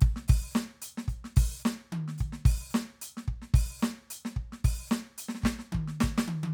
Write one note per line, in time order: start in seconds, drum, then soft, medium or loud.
0.01 kick loud
0.01 closed hi-hat medium
0.16 snare medium
0.28 open hi-hat loud
0.28 kick loud
0.51 hi-hat pedal medium
0.55 snare loud
0.82 closed hi-hat loud
0.98 snare medium
1.08 closed hi-hat soft
1.08 kick medium
1.25 snare medium
1.36 open hi-hat loud
1.36 kick loud
1.60 hi-hat pedal medium
1.65 snare loud
1.93 high tom loud
2.08 snare soft
2.18 closed hi-hat medium
2.18 kick medium
2.33 snare medium
2.46 open hi-hat loud
2.46 kick loud
2.70 hi-hat pedal medium
2.75 snare loud
3.02 closed hi-hat loud
3.17 snare medium
3.28 kick medium
3.28 closed hi-hat soft
3.42 snare soft
3.54 open hi-hat loud
3.54 kick loud
3.79 snare loud
3.79 hi-hat pedal medium
4.11 closed hi-hat loud
4.25 snare medium
4.37 kick medium
4.53 snare soft
4.65 open hi-hat loud
4.65 kick loud
4.87 hi-hat pedal medium
4.91 snare loud
5.18 closed hi-hat loud
5.29 snare medium
5.35 snare medium
5.42 kick medium
5.42 snare soft
5.45 snare loud
5.59 snare medium
5.73 kick medium
5.73 high tom loud
5.88 snare soft
6.01 kick medium
6.01 snare loud
6.01 hi-hat pedal medium
6.18 snare loud
6.28 high tom loud
6.44 high tom loud